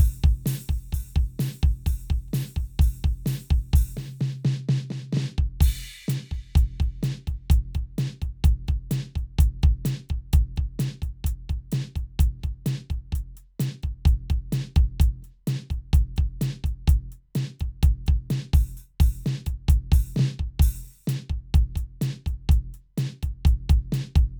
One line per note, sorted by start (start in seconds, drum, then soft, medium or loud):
0.01 open hi-hat loud
0.01 kick loud
0.26 kick loud
0.48 open hi-hat loud
0.48 snare loud
0.71 kick medium
0.95 open hi-hat medium
0.95 kick medium
1.05 snare soft
1.18 kick loud
1.42 open hi-hat medium
1.42 snare loud
1.65 kick loud
1.88 open hi-hat medium
1.88 kick medium
2.12 kick medium
2.30 kick soft
2.36 open hi-hat medium
2.36 snare loud
2.58 kick medium
2.81 open hi-hat medium
2.81 kick loud
3.06 kick loud
3.28 open hi-hat medium
3.28 snare loud
3.53 kick loud
3.76 open hi-hat loud
3.76 kick loud
3.99 kick soft
3.99 snare medium
3.99 floor tom loud
4.23 snare loud
4.23 floor tom loud
4.47 snare loud
4.47 floor tom loud
4.71 snare loud
4.71 floor tom loud
4.93 snare medium
4.93 floor tom loud
5.15 snare loud
5.15 hi-hat pedal soft
5.19 snare loud
5.40 kick loud
5.63 open hi-hat loud
5.63 kick loud
5.63 crash loud
6.05 hi-hat pedal soft
6.10 closed hi-hat loud
6.10 snare loud
6.33 kick medium
6.33 closed hi-hat soft
6.58 closed hi-hat loud
6.58 kick loud
6.81 kick medium
6.81 snare soft
6.81 closed hi-hat soft
7.05 closed hi-hat medium
7.05 snare loud
7.19 snare soft
7.29 kick medium
7.29 closed hi-hat soft
7.52 closed hi-hat loud
7.52 kick loud
7.77 kick medium
7.77 closed hi-hat soft
8.00 closed hi-hat medium
8.00 snare loud
8.24 kick medium
8.24 closed hi-hat soft
8.46 closed hi-hat loud
8.46 kick loud
8.67 snare soft
8.67 closed hi-hat soft
8.71 kick medium
8.93 closed hi-hat loud
8.93 snare loud
9.02 snare soft
9.10 snare soft
9.18 kick medium
9.18 closed hi-hat soft
9.41 closed hi-hat loud
9.41 kick loud
9.61 snare soft
9.65 kick loud
9.65 closed hi-hat soft
9.87 closed hi-hat loud
9.87 snare loud
10.11 kick medium
10.11 closed hi-hat soft
10.35 closed hi-hat loud
10.35 kick loud
10.58 kick medium
10.58 closed hi-hat soft
10.82 closed hi-hat loud
10.82 snare loud
11.04 kick medium
11.04 closed hi-hat soft
11.26 closed hi-hat loud
11.26 kick medium
11.52 kick medium
11.52 closed hi-hat soft
11.74 closed hi-hat loud
11.74 snare loud
11.98 kick medium
11.98 closed hi-hat soft
12.21 closed hi-hat loud
12.21 kick loud
12.42 kick medium
12.42 snare soft
12.42 closed hi-hat soft
12.68 closed hi-hat loud
12.68 snare loud
12.92 kick medium
12.92 closed hi-hat soft
13.15 closed hi-hat medium
13.15 kick medium
13.37 snare soft
13.37 closed hi-hat medium
13.62 closed hi-hat loud
13.62 snare loud
13.85 kick medium
13.85 closed hi-hat soft
14.08 closed hi-hat medium
14.08 kick loud
14.32 kick medium
14.32 closed hi-hat medium
14.55 closed hi-hat loud
14.55 snare loud
14.78 closed hi-hat medium
14.78 kick loud
15.02 closed hi-hat loud
15.02 kick loud
15.25 snare soft
15.25 closed hi-hat soft
15.49 closed hi-hat loud
15.49 snare loud
15.57 snare soft
15.72 kick medium
15.72 closed hi-hat soft
15.95 closed hi-hat loud
15.95 kick loud
16.19 kick loud
16.19 closed hi-hat medium
16.43 closed hi-hat loud
16.43 snare loud
16.66 kick medium
16.66 closed hi-hat medium
16.90 closed hi-hat loud
16.90 kick loud
17.14 closed hi-hat soft
17.37 closed hi-hat medium
17.37 snare loud
17.62 kick medium
17.62 closed hi-hat soft
17.85 closed hi-hat loud
17.85 kick loud
18.08 kick loud
18.08 snare soft
18.08 closed hi-hat medium
18.32 snare loud
18.32 closed hi-hat medium
18.56 open hi-hat medium
18.56 kick loud
18.79 hi-hat pedal soft
18.79 open hi-hat medium
19.02 open hi-hat medium
19.02 kick loud
19.25 snare loud
19.25 hi-hat pedal soft
19.29 closed hi-hat soft
19.48 closed hi-hat medium
19.48 kick medium
19.71 closed hi-hat loud
19.71 kick loud
19.94 open hi-hat loud
19.94 kick loud
19.94 snare soft
20.18 snare loud
20.18 hi-hat pedal soft
20.21 snare loud
20.42 kick medium
20.62 open hi-hat loud
20.62 kick loud
20.87 snare soft
20.87 open hi-hat soft
21.07 snare loud
21.07 hi-hat pedal soft
21.11 closed hi-hat loud
21.32 kick medium
21.32 closed hi-hat soft
21.56 closed hi-hat medium
21.56 kick loud
21.73 snare soft
21.78 kick medium
21.78 closed hi-hat medium
22.04 closed hi-hat loud
22.04 snare loud
22.17 snare soft
22.19 snare soft
22.28 kick medium
22.28 closed hi-hat medium
22.51 closed hi-hat medium
22.51 kick loud
22.75 snare soft
22.75 closed hi-hat soft
23.00 closed hi-hat medium
23.00 snare loud
23.25 kick medium
23.25 closed hi-hat medium
23.47 closed hi-hat medium
23.47 kick loud
23.72 closed hi-hat medium
23.72 kick loud
23.72 snare soft
23.95 closed hi-hat medium
23.95 snare loud
24.18 kick loud
24.18 closed hi-hat medium